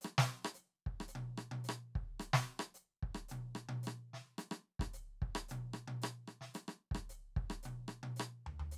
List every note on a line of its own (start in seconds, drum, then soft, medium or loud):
0.01 cross-stick medium
0.01 hi-hat pedal medium
0.18 snare loud
0.45 cross-stick medium
0.54 hi-hat pedal medium
0.86 kick medium
1.00 cross-stick medium
1.08 hi-hat pedal medium
1.15 high tom medium
1.37 cross-stick medium
1.51 high tom medium
1.64 hi-hat pedal medium
1.69 cross-stick medium
1.95 kick medium
2.20 cross-stick medium
2.20 hi-hat pedal medium
2.33 snare loud
2.59 cross-stick medium
2.74 hi-hat pedal medium
3.02 kick medium
3.15 cross-stick medium
3.28 hi-hat pedal medium
3.28 high tom medium
3.55 cross-stick medium
3.69 high tom loud
3.83 cross-stick medium
3.83 hi-hat pedal medium
4.13 snare soft
4.38 cross-stick medium
4.38 hi-hat pedal medium
4.51 cross-stick medium
4.79 kick medium
4.79 cross-stick medium
4.93 hi-hat pedal medium
5.22 kick medium
5.35 cross-stick medium
5.48 hi-hat pedal medium
5.48 high tom medium
5.73 cross-stick medium
5.87 high tom medium
6.02 cross-stick medium
6.02 hi-hat pedal medium
6.27 cross-stick medium
6.41 snare soft
6.54 cross-stick medium
6.54 hi-hat pedal medium
6.68 cross-stick medium
6.91 kick medium
6.91 cross-stick medium
7.09 hi-hat pedal medium
7.36 kick medium
7.50 cross-stick medium
7.63 hi-hat pedal medium
7.63 high tom medium
7.88 cross-stick medium
8.03 high tom medium
8.16 cross-stick medium
8.16 hi-hat pedal medium
8.46 floor tom medium
8.59 floor tom medium
8.71 hi-hat pedal medium